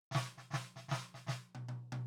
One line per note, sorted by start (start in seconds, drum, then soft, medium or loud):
0.11 snare medium
0.15 snare loud
0.38 snare soft
0.51 snare soft
0.54 snare medium
0.76 snare soft
0.88 snare soft
0.91 snare medium
1.14 snare soft
1.27 snare soft
1.28 snare medium
1.55 high tom medium
1.69 high tom medium
1.92 high tom loud